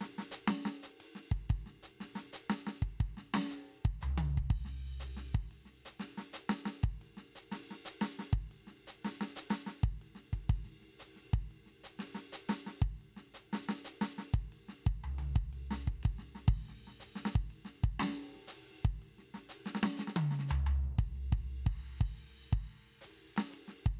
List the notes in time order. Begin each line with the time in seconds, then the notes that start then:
0.01 snare, ride
0.19 snare
0.32 hi-hat pedal
0.48 snare, ride
0.66 snare
0.83 hi-hat pedal
1.01 hi-hat pedal, ride
1.15 snare
1.32 kick, ride
1.50 kick, ride
1.66 snare
1.83 hi-hat pedal
2.01 snare, ride
2.16 snare
2.33 hi-hat pedal
2.50 snare, ride
2.67 snare
2.82 kick, ride
3.00 kick, ride
3.17 snare
3.34 snare
3.51 hi-hat pedal, ride
3.85 kick
4.01 floor tom, hi-hat pedal
4.18 high tom
4.38 kick
4.50 kick, crash
4.65 snare
4.86 snare
5.00 hi-hat pedal, ride
5.17 snare
5.35 kick, ride
5.51 ride
5.66 snare
5.86 hi-hat pedal
6.00 snare, ride
6.18 snare
6.34 hi-hat pedal
6.50 snare, ride
6.66 snare
6.84 kick, ride
7.02 ride
7.17 snare
7.36 hi-hat pedal
7.52 snare, ride
7.71 snare
7.86 hi-hat pedal
8.02 snare, ride
8.19 snare
8.33 kick, ride
8.52 ride
8.67 snare
8.87 hi-hat pedal
9.05 snare, ride
9.21 snare
9.36 hi-hat pedal
9.50 snare, ride
9.67 snare
9.84 kick, ride
10.02 ride
10.15 snare
10.33 kick
10.50 kick, ride
10.65 kick, snare
10.82 snare
11.00 hi-hat pedal, ride
11.16 snare
11.34 kick, ride
11.51 ride
11.66 snare
11.84 hi-hat pedal
11.99 snare, ride
12.04 hi-hat pedal
12.15 snare
12.33 hi-hat pedal
12.49 snare, ride
12.67 snare
12.82 kick, ride
13.01 ride
13.17 snare
13.34 hi-hat pedal
13.53 snare, ride
13.69 snare
13.85 hi-hat pedal
14.02 snare, ride
14.18 snare
14.34 kick, ride
14.53 ride
14.69 snare
14.87 kick
15.04 floor tom
15.19 high tom
15.36 kick, ride
15.53 ride
15.71 snare
15.88 kick
16.03 kick, ride
16.19 snare
16.35 snare
16.48 kick, crash
16.69 snare
16.87 snare
17.00 hi-hat pedal, ride
17.16 snare
17.26 snare
17.36 kick, ride
17.51 ride
17.65 snare
17.84 kick
18.00 snare, ride
18.36 snare
18.48 hi-hat pedal
18.53 ride
18.71 snare
18.85 kick, ride
18.95 hi-hat pedal
19.02 ride
19.19 snare
19.34 snare
19.49 hi-hat pedal, ride
19.66 snare
19.75 snare
19.83 snare
19.97 snare, hi-hat pedal
20.08 snare
20.16 high tom
20.31 snare
20.39 snare
20.45 snare
20.49 floor tom, hi-hat pedal
20.67 floor tom
20.82 snare
20.99 kick, ride
21.14 snare
21.33 kick, ride
21.67 kick, crash
22.01 kick, crash
22.36 snare
22.53 kick, crash
23.01 hi-hat pedal, ride
23.37 snare, ride
23.50 hi-hat pedal, ride
23.68 snare
23.86 kick